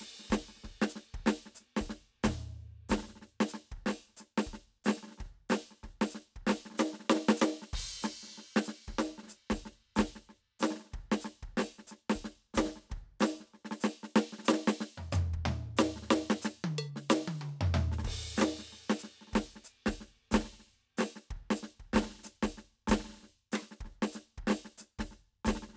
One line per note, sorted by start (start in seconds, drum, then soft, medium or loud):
0.01 snare soft
0.19 snare soft
0.24 snare soft
0.28 kick soft
0.28 snare soft
0.31 snare soft
0.31 hi-hat pedal medium
0.32 snare loud
0.49 snare soft
0.56 snare soft
0.64 kick soft
0.64 snare soft
0.82 snare loud
0.89 hi-hat pedal medium
0.96 snare soft
1.14 kick soft
1.26 snare medium
1.26 snare loud
1.46 snare soft
1.55 hi-hat pedal medium
1.61 snare soft
1.77 snare medium
1.81 kick soft
1.90 snare medium
2.24 kick soft
2.24 snare loud
2.24 hi-hat pedal medium
2.24 floor tom loud
2.89 kick soft
2.89 snare medium
2.89 hi-hat pedal loud
2.92 snare loud
2.98 snare soft
3.03 snare soft
3.09 snare soft
3.16 snare soft
3.22 snare soft
3.41 snare loud
3.48 hi-hat pedal medium
3.54 snare soft
3.72 kick soft
3.86 snare medium
3.89 snare medium
4.09 snare soft
4.17 snare soft
4.17 hi-hat pedal medium
4.38 snare loud
4.47 kick soft
4.54 snare soft
4.85 snare medium
4.85 hi-hat pedal medium
4.89 snare loud
4.97 snare soft
5.03 snare soft
5.11 snare soft
5.18 kick soft
5.18 snare soft
5.50 snare medium
5.50 hi-hat pedal medium
5.52 snare loud
5.71 snare soft
5.83 kick soft
5.83 snare soft
6.02 snare loud
6.10 hi-hat pedal medium
6.15 snare soft
6.36 kick soft
6.47 snare medium
6.50 snare loud
6.66 snare soft
6.70 snare soft
6.74 snare soft
6.74 hi-hat pedal loud
6.80 snare loud
6.94 snare soft
7.00 snare soft
7.04 snare soft
7.09 snare soft
7.09 snare loud
7.16 snare soft
7.29 snare loud
7.37 hi-hat pedal loud
7.42 snare loud
7.62 snare soft
7.73 kick medium
7.73 crash loud
8.03 snare medium
8.03 hi-hat pedal loud
8.23 snare soft
8.28 snare soft
8.31 snare soft
8.34 snare soft
8.38 snare soft
8.56 snare loud
8.64 hi-hat pedal medium
8.68 snare medium
8.88 kick soft
8.88 snare soft
8.99 snare medium
9.18 snare soft
9.23 snare soft
9.27 snare soft
9.27 hi-hat pedal medium
9.31 snare soft
9.50 kick soft
9.50 snare medium
9.66 snare soft
9.96 kick soft
9.96 snare medium
9.96 hi-hat pedal loud
9.99 snare loud
10.16 snare soft
10.29 snare soft
10.60 snare soft
10.60 hi-hat pedal loud
10.63 snare loud
10.75 snare soft
10.80 snare soft
10.85 snare soft
10.91 kick soft
10.91 snare soft
10.95 snare soft
11.12 snare loud
11.21 hi-hat pedal medium
11.25 snare soft
11.43 kick soft
11.58 snare medium
11.60 snare medium
11.79 snare soft
11.87 hi-hat pedal medium
11.92 snare soft
12.10 snare loud
12.15 kick soft
12.25 snare medium
12.54 kick soft
12.54 snare soft
12.54 hi-hat pedal medium
12.58 snare loud
12.66 snare soft
12.69 snare soft
12.76 snare soft
12.85 snare soft
12.90 kick soft
12.90 snare soft
13.20 snare loud
13.20 hi-hat pedal medium
13.23 snare loud
13.40 snare soft
13.54 snare soft
13.65 snare soft
13.71 snare medium
13.81 snare loud
13.81 hi-hat pedal medium
14.03 snare soft
14.16 snare loud
14.33 snare soft
14.39 snare soft
14.44 snare soft
14.44 hi-hat pedal loud
14.49 snare loud
14.53 snare medium
14.68 snare loud
14.81 snare medium
14.98 floor tom medium
15.12 floor tom loud
15.12 hi-hat pedal loud
15.34 kick soft
15.46 floor tom loud
15.77 snare loud
15.77 hi-hat pedal loud
15.96 snare soft
16.03 snare soft
16.07 snare soft
16.11 snare loud
16.30 snare loud
16.42 snare medium
16.42 hi-hat pedal loud
16.64 high tom loud
16.79 percussion loud
16.96 snare soft
17.10 snare loud
17.10 hi-hat pedal loud
17.28 high tom loud
17.42 high tom medium
17.61 floor tom loud
17.74 floor tom loud
17.92 snare soft
17.99 snare soft
18.04 kick medium
18.04 snare soft
18.04 ride loud
18.37 snare medium
18.37 hi-hat pedal loud
18.42 snare loud
18.59 snare soft
18.73 snare soft
18.90 snare loud
18.99 hi-hat pedal medium
19.04 snare soft
19.21 snare soft
19.28 snare soft
19.32 kick soft
19.32 snare soft
19.36 snare loud
19.56 snare soft
19.64 hi-hat pedal medium
19.86 kick soft
19.86 snare medium
20.01 snare soft
20.32 kick medium
20.32 snare medium
20.32 hi-hat pedal loud
20.34 snare loud
20.40 snare soft
20.45 snare soft
20.53 snare soft
20.60 snare soft
20.67 snare soft
20.98 snare medium
20.98 hi-hat pedal loud
21.01 snare medium
21.16 snare soft
21.31 kick soft
21.31 snare soft
21.51 snare loud
21.56 hi-hat pedal medium
21.63 snare soft
21.80 kick soft
21.94 kick medium
21.94 snare medium
21.96 snare loud
22.03 snare soft
22.06 snare soft
22.10 snare soft
22.14 snare soft
22.19 snare soft
22.24 snare soft
22.24 hi-hat pedal loud
22.43 kick soft
22.43 snare loud
22.58 snare soft
22.88 kick medium
22.88 snare medium
22.88 hi-hat pedal loud
22.92 snare loud
23.00 snare soft
23.05 snare soft
23.09 snare soft
23.13 snare soft
23.17 snare soft
23.20 snare soft
23.23 snare soft
23.52 cross-stick medium
23.52 snare medium
23.52 hi-hat pedal loud
23.62 snare soft
23.71 snare soft
23.81 kick soft
23.85 snare soft
24.03 snare medium
24.13 snare soft
24.13 hi-hat pedal medium
24.38 kick soft
24.47 snare medium
24.50 snare loud
24.65 snare soft
24.78 snare soft
24.78 hi-hat pedal loud
24.99 kick soft
24.99 snare medium
25.11 snare soft
25.45 kick medium
25.45 snare medium
25.45 hi-hat pedal loud
25.48 snare loud
25.56 snare soft
25.63 snare soft
25.69 snare soft
25.74 snare soft